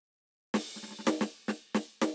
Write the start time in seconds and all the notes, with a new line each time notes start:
0.54 snare, ride
0.76 snare
0.83 snare
0.88 snare
0.91 snare
0.99 snare
1.05 snare
1.07 snare
1.21 snare
1.48 snare
1.75 snare
2.02 snare